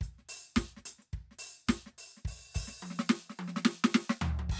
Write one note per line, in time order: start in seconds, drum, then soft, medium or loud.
0.01 closed hi-hat medium
0.01 kick medium
0.18 snare soft
0.29 open hi-hat loud
0.54 closed hi-hat medium
0.54 kick medium
0.54 snare loud
0.54 hi-hat pedal soft
0.77 kick soft
0.77 snare soft
0.85 closed hi-hat loud
0.99 snare soft
0.99 closed hi-hat soft
1.13 kick soft
1.13 closed hi-hat soft
1.31 snare soft
1.39 open hi-hat loud
1.67 closed hi-hat loud
1.67 kick soft
1.67 snare loud
1.67 hi-hat pedal soft
1.86 snare soft
1.98 open hi-hat loud
2.17 snare soft
2.25 open hi-hat medium
2.25 kick medium
2.55 open hi-hat loud
2.55 kick medium
2.68 snare soft
2.83 high tom medium
2.90 snare soft
2.99 snare medium
3.09 snare loud
3.30 snare soft
3.39 high tom medium
3.48 snare soft
3.56 snare medium
3.65 snare loud
3.84 snare loud
3.95 snare loud
4.10 snare medium
4.21 floor tom loud
4.21 hi-hat pedal soft
4.39 high tom medium
4.50 kick medium
4.50 ride loud